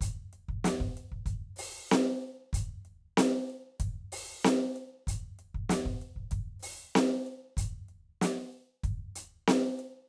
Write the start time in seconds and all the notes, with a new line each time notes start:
0.01 closed hi-hat, kick
0.33 closed hi-hat
0.49 kick
0.65 closed hi-hat, snare
0.80 kick
0.97 closed hi-hat
1.12 kick
1.26 closed hi-hat, kick
1.56 open hi-hat, hi-hat pedal
1.91 snare, hi-hat pedal
2.53 closed hi-hat, kick
2.85 closed hi-hat
3.18 closed hi-hat, snare
3.50 closed hi-hat
3.80 kick, closed hi-hat
4.12 open hi-hat
4.45 open hi-hat, snare, hi-hat pedal
4.76 closed hi-hat
5.07 closed hi-hat, kick
5.39 closed hi-hat
5.55 kick
5.70 closed hi-hat, snare
5.86 kick
6.02 closed hi-hat
6.16 kick
6.31 kick, closed hi-hat
6.60 open hi-hat, hi-hat pedal
6.96 snare, hi-hat pedal
7.27 closed hi-hat
7.57 closed hi-hat, kick
7.89 closed hi-hat
8.22 closed hi-hat, snare
8.53 closed hi-hat
8.84 kick, closed hi-hat
9.16 open hi-hat
9.48 open hi-hat, snare, hi-hat pedal
9.79 closed hi-hat